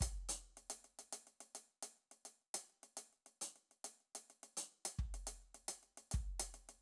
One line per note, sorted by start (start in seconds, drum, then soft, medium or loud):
0.00 kick soft
0.00 closed hi-hat loud
0.00 hi-hat pedal soft
0.29 closed hi-hat loud
0.41 closed hi-hat soft
0.57 closed hi-hat soft
0.70 closed hi-hat medium
0.84 closed hi-hat soft
0.99 closed hi-hat medium
1.12 closed hi-hat medium
1.27 closed hi-hat soft
1.40 closed hi-hat soft
1.55 closed hi-hat medium
1.71 closed hi-hat soft
1.82 closed hi-hat medium
1.97 closed hi-hat soft
2.11 closed hi-hat soft
2.25 closed hi-hat medium
2.41 closed hi-hat soft
2.54 closed hi-hat loud
2.70 closed hi-hat soft
2.83 closed hi-hat soft
2.97 closed hi-hat medium
3.13 closed hi-hat soft
3.26 closed hi-hat soft
3.41 closed hi-hat medium
3.56 closed hi-hat soft
3.71 closed hi-hat soft
3.84 closed hi-hat medium
4.00 closed hi-hat soft
4.15 closed hi-hat medium
4.30 closed hi-hat soft
4.43 closed hi-hat soft
4.57 closed hi-hat loud
4.72 closed hi-hat soft
4.85 closed hi-hat loud
4.98 kick soft
5.14 closed hi-hat soft
5.27 closed hi-hat medium
5.42 closed hi-hat soft
5.54 closed hi-hat soft
5.68 closed hi-hat medium
5.83 closed hi-hat soft
5.97 closed hi-hat soft
6.11 kick soft
6.11 closed hi-hat medium
6.40 closed hi-hat loud
6.54 closed hi-hat soft
6.69 closed hi-hat soft